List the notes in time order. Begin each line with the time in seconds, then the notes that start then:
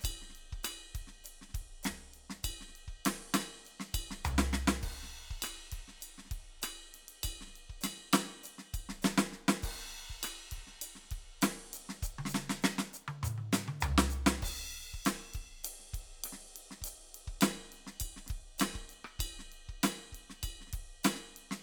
0.01 kick, hi-hat pedal
0.05 ride bell
0.10 kick
0.16 kick
0.22 snare
0.30 snare
0.35 ride
0.53 kick
0.58 kick
0.64 cross-stick, hi-hat pedal, ride bell
0.95 kick, ride
1.01 kick
1.07 snare
1.24 hi-hat pedal, ride
1.42 snare
1.49 snare
1.54 kick, ride
1.61 kick
1.83 snare, hi-hat pedal, ride, floor tom
2.14 ride
2.30 snare
2.43 kick, hi-hat pedal, ride bell
2.51 kick
2.61 snare
2.68 snare
2.75 ride
2.88 kick
3.05 snare, hi-hat pedal, ride
3.34 snare, ride bell
3.40 snare
3.65 hi-hat pedal, ride
3.80 snare
3.92 kick, hi-hat pedal, ride bell
4.01 kick
4.06 kick
4.11 snare
4.25 hi-hat pedal, floor tom
4.38 snare
4.53 snare
4.68 snare
4.81 kick, hi-hat pedal, crash
4.89 kick
4.94 kick
5.03 snare
5.31 kick
5.36 kick
5.42 cross-stick, hi-hat pedal, ride bell
5.72 kick, ride
5.78 kick
5.88 snare
6.01 hi-hat pedal, ride bell
6.18 snare
6.25 snare
6.31 kick, ride
6.38 kick
6.62 cross-stick, hi-hat pedal, ride bell
6.94 snare, ride
7.03 snare
7.08 ride
7.23 kick, hi-hat pedal, ride bell
7.31 kick
7.41 snare
7.47 snare
7.56 ride
7.70 kick
7.81 snare, hi-hat pedal, ride bell
8.13 snare, ride bell
8.44 hi-hat pedal, ride
8.59 snare
8.74 kick, ride bell
8.81 kick
8.89 snare
9.02 snare, hi-hat pedal
9.18 snare
9.33 snare
9.48 snare
9.63 kick, hi-hat pedal, crash
9.74 kick
9.83 snare
10.10 kick
10.23 cross-stick, hi-hat pedal, ride bell
10.52 kick, ride
10.58 kick
10.67 snare
10.81 hi-hat pedal, ride bell
10.95 snare
11.04 snare
11.11 kick, ride
11.18 kick
11.42 snare, hi-hat pedal, ride
11.73 hi-hat pedal, ride
11.89 snare
12.03 kick, hi-hat pedal
12.10 kick
12.19 high tom
12.26 snare, hi-hat pedal
12.35 snare
12.50 snare
12.62 snare, hi-hat pedal
12.79 snare
12.94 hi-hat pedal
13.08 high tom
13.23 hi-hat pedal, mid tom
13.38 high tom
13.53 snare, hi-hat pedal
13.68 high tom
13.81 hi-hat pedal, floor tom
13.98 snare
14.09 kick, hi-hat pedal
14.27 snare
14.43 kick, hi-hat pedal, crash
14.50 kick, cross-stick
14.53 kick
14.94 kick
15.05 snare, hi-hat pedal, ride bell
15.34 kick, ride
15.42 kick
15.64 hi-hat pedal, ride
15.79 snare
15.83 snare
15.94 kick, ride
16.00 kick
16.24 cross-stick, ride
16.33 snare
16.56 ride
16.71 snare
16.82 kick, hi-hat pedal, ride
17.15 ride
17.28 kick
17.41 snare, hi-hat pedal, ride bell
17.72 ride
17.87 snare
18.00 kick, hi-hat pedal, ride bell
18.08 kick
18.16 snare
18.26 kick, snare, ride
18.37 kick
18.59 snare, hi-hat pedal, ride bell
18.74 kick, snare
18.89 hi-hat pedal, ride
19.05 cross-stick
19.20 kick, hi-hat pedal, ride bell
19.27 kick
19.39 snare
19.52 ride
19.69 kick
19.83 snare, hi-hat pedal, ride bell
20.12 kick, ride
20.30 snare
20.43 kick, ride bell
20.50 kick
20.61 snare
20.67 snare
20.73 kick, ride
20.80 kick
20.83 kick
21.04 snare, hi-hat pedal, ride bell
21.15 snare
21.37 ride
21.51 snare